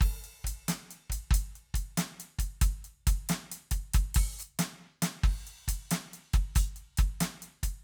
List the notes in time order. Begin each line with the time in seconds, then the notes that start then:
0.01 kick, crash
0.24 closed hi-hat
0.44 kick, closed hi-hat
0.68 snare, closed hi-hat
0.91 closed hi-hat
1.10 kick, closed hi-hat
1.31 kick, closed hi-hat
1.56 closed hi-hat
1.74 kick, closed hi-hat
1.98 snare, closed hi-hat
2.20 closed hi-hat
2.39 kick, closed hi-hat
2.62 kick, closed hi-hat
2.85 closed hi-hat
3.07 kick, closed hi-hat
3.29 snare, closed hi-hat
3.52 closed hi-hat
3.71 kick, closed hi-hat
3.94 kick, closed hi-hat
4.15 kick, open hi-hat
4.39 hi-hat pedal
4.59 snare, closed hi-hat
5.02 snare, closed hi-hat
5.24 kick, crash
5.47 closed hi-hat
5.68 kick, closed hi-hat
5.91 snare, closed hi-hat
6.14 closed hi-hat
6.34 kick, closed hi-hat
6.56 closed hi-hat, kick
6.76 closed hi-hat
6.98 kick, closed hi-hat
7.21 snare, closed hi-hat
7.42 closed hi-hat
7.63 kick, closed hi-hat